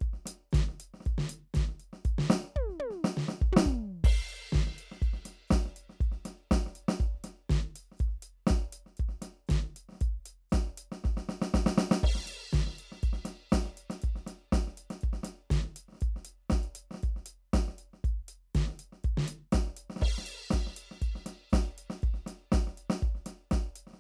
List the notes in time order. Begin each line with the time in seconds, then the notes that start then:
0.01 kick, closed hi-hat
0.14 snare
0.26 closed hi-hat, snare
0.51 kick, snare, closed hi-hat, hi-hat pedal
0.69 snare
0.80 closed hi-hat
0.94 snare
1.01 snare
1.06 kick, closed hi-hat
1.19 snare
1.30 closed hi-hat
1.54 kick, snare, closed hi-hat
1.69 snare
1.80 closed hi-hat
1.93 snare
2.05 kick, closed hi-hat
2.19 snare
2.30 snare
2.45 snare
2.56 kick, high tom
2.70 snare
2.80 high tom
2.91 snare
3.05 snare
3.17 snare
3.29 snare
3.42 kick
3.52 floor tom
3.57 snare
3.66 kick
4.04 kick, crash, ride
4.29 closed hi-hat
4.53 closed hi-hat, kick, snare
4.68 snare
4.79 closed hi-hat
4.92 snare
5.02 kick, closed hi-hat
5.14 snare
5.26 open hi-hat, snare
5.48 snare, hi-hat pedal
5.52 kick, closed hi-hat
5.66 snare
5.77 closed hi-hat
5.90 snare
6.01 kick, closed hi-hat
6.12 snare
6.26 snare, closed hi-hat
6.52 kick, snare, closed hi-hat
6.67 snare
6.76 closed hi-hat
6.89 snare
7.00 kick, closed hi-hat
7.15 snare
7.24 snare, closed hi-hat
7.50 kick, snare, closed hi-hat
7.76 open hi-hat
7.92 snare
7.97 kick, closed hi-hat, hi-hat pedal
8.08 snare
8.23 closed hi-hat
8.47 kick, snare, closed hi-hat
8.61 snare
8.73 closed hi-hat
8.87 snare
8.97 kick, closed hi-hat
9.09 snare
9.22 snare, open hi-hat
9.47 kick, snare, closed hi-hat, hi-hat pedal
9.63 snare
9.77 closed hi-hat
9.89 snare
9.93 snare
9.96 snare
10.01 kick, closed hi-hat
10.26 open hi-hat
10.50 kick, snare, closed hi-hat, hi-hat pedal
10.67 snare
10.78 closed hi-hat
10.92 snare
11.04 kick, snare
11.18 snare
11.29 snare
11.42 snare
11.54 kick, snare
11.67 snare
11.78 snare
11.92 snare
12.04 kick, crash
12.16 snare
12.26 open hi-hat, snare
12.50 snare, hi-hat pedal
12.54 kick, closed hi-hat
12.67 snare
12.79 closed hi-hat
12.92 snare
13.03 closed hi-hat, kick
13.13 snare
13.26 snare, open hi-hat
13.50 kick, snare, closed hi-hat, hi-hat pedal
13.66 snare
13.78 closed hi-hat
13.90 snare, closed hi-hat
14.02 closed hi-hat, kick
14.16 snare
14.27 snare, closed hi-hat
14.53 closed hi-hat, kick, snare
14.68 snare
14.78 closed hi-hat
14.91 snare, closed hi-hat
15.01 kick, closed hi-hat
15.14 snare
15.24 closed hi-hat, snare
15.51 kick, snare, closed hi-hat
15.64 snare
15.77 closed hi-hat
15.89 snare
15.93 snare
15.95 snare
16.01 closed hi-hat, kick
16.17 snare
16.25 closed hi-hat
16.50 kick, snare, closed hi-hat
16.64 closed hi-hat, snare
16.76 open hi-hat
16.91 snare
16.95 snare
17.03 kick, closed hi-hat
17.17 snare
17.26 closed hi-hat
17.54 kick, snare, closed hi-hat
17.69 snare
17.79 closed hi-hat
17.94 snare
18.05 kick, closed hi-hat
18.29 open hi-hat
18.55 kick, snare, closed hi-hat
18.68 snare
18.71 snare
18.80 closed hi-hat
18.93 snare
19.04 kick, closed hi-hat
19.18 snare
19.28 closed hi-hat
19.53 closed hi-hat, kick, snare
19.67 snare
19.77 closed hi-hat
19.90 snare
19.97 snare
20.01 kick, snare, crash
20.19 snare
20.27 closed hi-hat
20.51 kick, snare, closed hi-hat
20.67 snare
20.77 closed hi-hat
20.92 snare
21.02 closed hi-hat, kick
21.16 snare
21.27 snare, open hi-hat
21.50 kick, snare, closed hi-hat, hi-hat pedal
21.69 snare
21.78 closed hi-hat
21.90 snare
22.03 closed hi-hat, kick
22.14 snare
22.27 snare, closed hi-hat
22.52 closed hi-hat, kick, snare
22.68 snare
22.78 closed hi-hat
22.90 snare
23.02 kick, closed hi-hat
23.15 snare
23.26 snare, closed hi-hat
23.52 kick, snare, closed hi-hat
23.76 closed hi-hat
23.87 snare
23.91 snare
23.94 snare